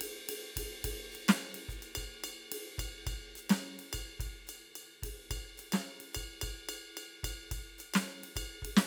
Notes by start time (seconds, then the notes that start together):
0.01 hi-hat pedal, ride
0.29 ride
0.56 kick, hi-hat pedal, ride
0.84 kick, ride
0.92 kick
1.12 hi-hat pedal, ride
1.28 snare, ride bell
1.55 ride
1.69 kick, hi-hat pedal
1.79 snare, ride bell
1.95 kick, ride bell
2.24 hi-hat pedal, ride bell
2.52 ride
2.78 kick, hi-hat pedal, ride bell
3.07 kick, ride bell
3.36 hi-hat pedal, ride
3.50 snare, ride bell
3.79 ride
3.93 kick, hi-hat pedal, ride bell
4.20 kick, ride bell
4.26 kick
4.47 hi-hat pedal, ride bell
4.76 ride bell
5.01 kick, snare, hi-hat pedal, ride
5.31 kick, ride bell
5.39 kick
5.57 hi-hat pedal, ride
5.72 snare, ride bell
6.00 ride
6.14 kick, hi-hat pedal, ride bell
6.42 kick, ride bell
6.69 hi-hat pedal, ride bell
6.97 ride bell
7.23 kick, hi-hat pedal, ride bell
7.51 kick, ride bell
7.60 kick
7.78 hi-hat pedal, ride bell
7.94 snare, ride bell
8.24 ride
8.36 kick, hi-hat pedal, ride bell
8.62 kick, ride
8.77 snare